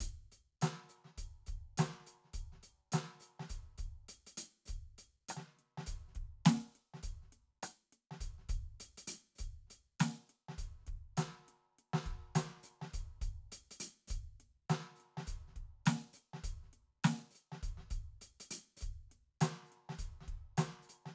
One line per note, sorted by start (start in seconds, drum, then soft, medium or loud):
0.01 closed hi-hat loud
0.01 kick soft
0.33 closed hi-hat soft
0.62 closed hi-hat loud
0.62 snare loud
0.90 open hi-hat soft
0.90 hi-hat pedal soft
1.05 snare soft
1.18 closed hi-hat medium
1.18 kick soft
1.47 closed hi-hat soft
1.47 kick soft
1.78 closed hi-hat loud
1.78 snare loud
1.91 snare soft
2.07 closed hi-hat medium
2.25 snare soft
2.34 closed hi-hat medium
2.34 kick soft
2.53 snare soft
2.64 closed hi-hat soft
2.93 closed hi-hat loud
2.93 snare medium
3.21 closed hi-hat soft
3.21 hi-hat pedal soft
3.40 snare soft
3.50 closed hi-hat medium
3.50 kick soft
3.79 closed hi-hat medium
3.79 kick soft
4.09 closed hi-hat medium
4.27 closed hi-hat medium
4.38 closed hi-hat loud
4.66 closed hi-hat medium
4.66 kick soft
4.66 hi-hat pedal soft
4.99 closed hi-hat medium
5.29 closed hi-hat loud
5.29 cross-stick medium
5.37 snare soft
5.60 closed hi-hat soft
5.78 snare medium
5.87 closed hi-hat medium
5.87 kick soft
6.09 snare soft
6.16 kick soft
6.16 closed hi-hat soft
6.46 closed hi-hat loud
6.46 snare loud
6.76 closed hi-hat soft
6.94 snare soft
7.04 closed hi-hat medium
7.04 kick soft
7.23 snare soft
7.33 closed hi-hat soft
7.63 closed hi-hat loud
7.63 cross-stick medium
7.93 closed hi-hat soft
8.12 snare soft
8.21 closed hi-hat medium
8.21 kick soft
8.39 snare soft
8.50 closed hi-hat medium
8.50 kick medium
8.60 kick soft
8.81 closed hi-hat medium
8.98 closed hi-hat medium
9.08 closed hi-hat loud
9.36 closed hi-hat medium
9.36 hi-hat pedal soft
9.41 kick soft
9.68 closed hi-hat medium
9.68 snare soft
10.00 closed hi-hat loud
10.00 snare medium
10.30 closed hi-hat soft
10.49 snare soft
10.59 closed hi-hat medium
10.59 kick soft
10.80 snare soft
10.84 snare soft
10.84 closed hi-hat soft
10.88 kick soft
11.18 closed hi-hat loud
11.18 snare medium
11.49 closed hi-hat soft
11.79 closed hi-hat soft
11.94 snare medium
12.06 kick soft
12.06 closed hi-hat soft
12.12 kick soft
12.36 closed hi-hat loud
12.36 snare loud
12.49 snare soft
12.64 closed hi-hat soft
12.64 hi-hat pedal medium
12.82 snare medium
12.94 closed hi-hat medium
12.94 kick soft
13.22 closed hi-hat medium
13.22 kick soft
13.31 kick soft
13.53 closed hi-hat medium
13.72 closed hi-hat medium
13.81 closed hi-hat loud
14.08 closed hi-hat medium
14.08 kick soft
14.08 hi-hat pedal medium
14.41 closed hi-hat soft
14.70 closed hi-hat medium
14.70 snare loud
14.96 hi-hat pedal soft
15.01 closed hi-hat soft
15.18 snare medium
15.28 closed hi-hat medium
15.28 kick soft
15.48 snare soft
15.54 kick soft
15.54 snare soft
15.54 closed hi-hat soft
15.87 closed hi-hat loud
15.87 snare loud
16.14 closed hi-hat soft
16.14 hi-hat pedal medium
16.34 snare soft
16.44 closed hi-hat medium
16.44 kick soft
16.64 snare soft
16.74 closed hi-hat soft
17.05 closed hi-hat medium
17.05 snare loud
17.18 snare soft
17.31 hi-hat pedal soft
17.36 closed hi-hat soft
17.53 snare soft
17.63 closed hi-hat medium
17.63 kick soft
17.69 kick soft
17.78 snare soft
17.91 closed hi-hat medium
17.91 kick soft
17.98 kick soft
18.00 kick soft
18.22 closed hi-hat medium
18.41 closed hi-hat medium
18.51 closed hi-hat loud
18.77 closed hi-hat medium
18.77 hi-hat pedal medium
18.83 kick soft
19.10 snare soft
19.10 closed hi-hat soft
19.41 closed hi-hat loud
19.41 snare loud
19.67 hi-hat pedal soft
19.73 closed hi-hat soft
19.90 snare medium
19.99 closed hi-hat medium
19.99 kick soft
20.21 snare soft
20.28 kick soft
20.28 closed hi-hat soft
20.58 closed hi-hat medium
20.58 snare loud
20.83 hi-hat pedal soft
20.90 closed hi-hat medium
21.06 snare soft